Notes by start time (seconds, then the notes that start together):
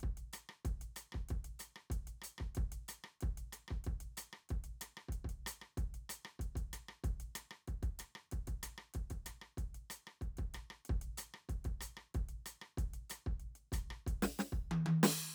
0.01 kick, closed hi-hat
0.18 closed hi-hat
0.34 closed hi-hat, cross-stick
0.50 cross-stick
0.66 kick, closed hi-hat
0.82 closed hi-hat
0.97 closed hi-hat, cross-stick
1.13 kick, cross-stick
1.30 kick, closed hi-hat
1.45 closed hi-hat
1.60 closed hi-hat, cross-stick
1.77 cross-stick
1.91 kick, closed hi-hat
2.08 closed hi-hat
2.23 closed hi-hat, cross-stick
2.39 kick, cross-stick
2.56 kick, closed hi-hat
2.73 closed hi-hat
2.89 closed hi-hat, cross-stick
3.05 cross-stick
3.22 kick, closed hi-hat
3.38 closed hi-hat
3.53 cross-stick, closed hi-hat
3.69 kick, cross-stick
3.85 kick, closed hi-hat
4.01 closed hi-hat
4.18 closed hi-hat, cross-stick
4.34 cross-stick
4.50 kick, closed hi-hat
4.65 closed hi-hat
4.82 cross-stick, closed hi-hat
4.98 cross-stick
5.09 kick, closed hi-hat
5.25 kick
5.30 closed hi-hat
5.47 closed hi-hat, cross-stick
5.63 cross-stick
5.78 kick, closed hi-hat
5.95 closed hi-hat
6.10 closed hi-hat, cross-stick
6.26 cross-stick
6.40 kick, closed hi-hat
6.56 kick, closed hi-hat
6.74 cross-stick, closed hi-hat
6.89 cross-stick
7.05 kick, closed hi-hat
7.21 closed hi-hat
7.36 cross-stick, closed hi-hat
7.52 cross-stick
7.68 kick, closed hi-hat
7.84 kick, closed hi-hat
8.00 cross-stick, closed hi-hat
8.16 cross-stick
8.32 kick, closed hi-hat
8.48 kick, closed hi-hat
8.64 cross-stick, closed hi-hat
8.79 cross-stick
8.95 kick, closed hi-hat
9.11 kick, closed hi-hat
9.27 cross-stick, closed hi-hat
9.42 cross-stick
9.58 kick, closed hi-hat
9.75 closed hi-hat
9.91 closed hi-hat, cross-stick
10.08 cross-stick
10.22 kick, closed hi-hat
10.38 kick, closed hi-hat
10.55 cross-stick, closed hi-hat
10.71 cross-stick
10.86 closed hi-hat
10.90 kick
11.02 closed hi-hat
11.18 closed hi-hat, cross-stick
11.35 cross-stick
11.50 kick, closed hi-hat
11.65 kick, closed hi-hat
11.82 closed hi-hat, cross-stick
11.98 cross-stick
12.15 kick, closed hi-hat
12.30 closed hi-hat
12.47 closed hi-hat, cross-stick
12.63 cross-stick
12.78 kick, closed hi-hat
12.94 closed hi-hat
13.11 closed hi-hat, cross-stick
13.27 kick
13.41 closed hi-hat
13.56 closed hi-hat
13.73 closed hi-hat, kick, cross-stick
13.91 cross-stick
14.07 kick, closed hi-hat
14.23 snare
14.40 snare
14.53 kick
14.72 high tom
14.87 high tom
15.04 snare, crash